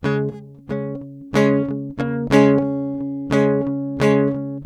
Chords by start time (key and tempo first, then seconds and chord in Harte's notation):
C# major, 90 BPM
0.00 C#:(1,5)